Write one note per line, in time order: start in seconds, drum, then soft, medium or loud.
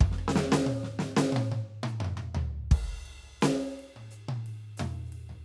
0.01 kick loud
0.01 mid tom loud
0.12 snare medium
0.19 cross-stick soft
0.28 snare medium
0.36 snare loud
0.52 snare loud
0.67 high tom loud
0.84 snare medium
0.99 snare loud
1.17 snare loud
1.33 high tom loud
1.37 high tom loud
1.52 high tom loud
1.84 hi-hat pedal soft
1.84 high tom loud
2.01 mid tom loud
2.05 mid tom medium
2.17 mid tom medium
2.35 floor tom loud
2.72 kick loud
2.72 crash medium
3.06 ride soft
3.42 snare loud
3.42 hi-hat pedal medium
3.42 ride medium
3.80 ride soft
3.97 high tom medium
4.11 hi-hat pedal medium
4.11 ride soft
4.29 high tom loud
4.46 ride soft
4.78 hi-hat pedal medium
4.78 mid tom loud
4.78 ride medium
5.06 hi-hat pedal soft
5.13 ride medium
5.30 floor tom medium